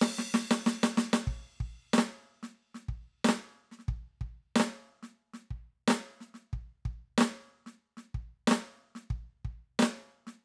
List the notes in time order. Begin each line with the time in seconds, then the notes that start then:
0.01 snare, crash
0.19 snare
0.34 snare
0.51 snare
0.66 snare
0.83 snare
0.98 snare
1.13 snare
1.27 kick
1.60 kick
1.93 snare
1.98 snare
2.43 snare
2.75 snare
2.89 kick
3.25 snare
3.29 snare
3.72 snare
3.79 snare
3.88 kick
4.21 kick
4.56 snare
4.60 snare
5.03 snare
5.34 snare
5.51 kick
5.88 snare
5.90 snare
6.21 snare
6.34 snare
6.53 kick
6.85 kick
7.18 snare
7.21 snare
7.66 snare
7.97 snare
8.15 kick
8.48 snare
8.51 snare
8.95 snare
9.10 kick
9.45 kick
9.79 snare
9.82 snare
10.27 snare